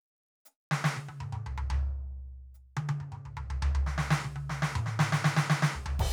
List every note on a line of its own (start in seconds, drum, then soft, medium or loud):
0.45 hi-hat pedal medium
0.71 snare loud
0.84 snare loud
0.96 high tom medium
1.09 high tom medium
1.20 mid tom medium
1.32 mid tom medium
1.46 floor tom medium
1.58 floor tom medium
1.70 floor tom loud
2.54 hi-hat pedal soft
2.77 high tom loud
2.89 high tom loud
3.00 mid tom medium
3.12 mid tom medium
3.25 floor tom medium
3.37 floor tom medium
3.50 floor tom medium
3.62 floor tom loud
3.75 floor tom loud
3.86 snare medium
3.98 snare loud
4.11 snare loud
4.24 high tom medium
4.36 high tom medium
4.49 snare medium
4.62 snare loud
4.75 mid tom loud
4.86 snare medium
4.99 snare loud
5.12 snare loud
5.24 snare loud
5.36 snare loud
5.50 snare loud
5.62 snare loud
5.75 floor tom medium
5.86 floor tom loud
5.99 kick medium
5.99 crash loud